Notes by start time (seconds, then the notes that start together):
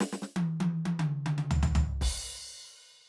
0.00 snare
0.12 snare
0.22 snare
0.36 high tom
0.60 high tom
0.85 high tom
0.99 mid tom
1.26 mid tom
1.38 mid tom
1.51 floor tom
1.63 floor tom
1.75 floor tom
2.01 kick, crash